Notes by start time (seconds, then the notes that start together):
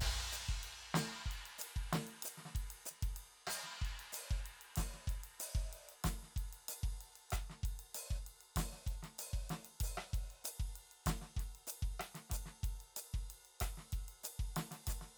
0.01 kick, crash, ride
0.33 hi-hat pedal, ride
0.49 kick
0.64 ride
0.95 snare, hi-hat pedal, ride
1.26 kick
1.32 ride
1.46 ride
1.59 hi-hat pedal, ride
1.77 kick
1.93 snare, ride
2.07 ride
2.23 hi-hat pedal, ride
2.38 snare
2.46 snare
2.51 snare
2.56 kick, ride
2.71 ride
2.86 hi-hat pedal
2.91 snare
3.03 kick, ride
3.17 ride
3.47 kick, cross-stick, hi-hat pedal, ride
3.64 snare
3.82 kick, ride
4.00 ride
4.13 hi-hat pedal, ride
4.31 kick, snare
4.46 ride
4.62 ride
4.76 kick, snare, hi-hat pedal, ride
4.94 snare
5.08 kick, ride
5.24 ride
5.40 hi-hat pedal, ride
5.55 kick, snare
5.73 ride
5.89 ride
6.04 kick, snare, hi-hat pedal, ride
6.23 snare
6.37 kick, ride
6.53 ride
6.69 hi-hat pedal, ride
6.84 kick, snare
7.01 ride
7.16 ride
7.31 kick, cross-stick, hi-hat pedal, ride
7.50 snare
7.64 kick, ride
7.80 ride
7.95 hi-hat pedal, ride
8.11 kick, snare
8.27 ride
8.41 ride
8.57 kick, snare, hi-hat pedal, ride
8.73 snare
8.87 kick, ride
9.03 snare, ride
9.19 hi-hat pedal, ride
9.34 kick
9.50 snare, ride
9.65 ride
9.81 kick, hi-hat pedal, ride
9.98 cross-stick
10.14 kick, ride
10.31 ride
10.45 hi-hat pedal, ride
10.60 kick
10.76 ride
10.92 ride
11.07 kick, snare, hi-hat pedal, ride
11.22 snare
11.37 kick, snare, ride
11.56 ride
11.67 hi-hat pedal, ride
11.83 kick
12.00 cross-stick, ride
12.15 snare, ride
12.30 kick, snare, hi-hat pedal, ride
12.46 snare
12.64 kick, ride
12.81 ride
12.97 hi-hat pedal, ride
13.14 kick, snare
13.31 ride
13.46 ride
13.61 kick, cross-stick, hi-hat pedal, ride
13.78 snare
13.93 kick, ride
14.09 ride
14.24 hi-hat pedal, ride
14.40 kick
14.57 snare, ride
14.72 snare, ride
14.87 kick, snare, hi-hat pedal, ride
15.02 snare